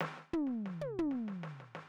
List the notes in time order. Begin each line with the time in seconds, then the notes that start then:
0.01 snare, hi-hat pedal
0.18 snare
0.33 floor tom
0.48 snare
0.67 snare
0.82 high tom
0.99 floor tom
1.12 snare
1.29 snare
1.44 snare
1.61 snare
1.76 snare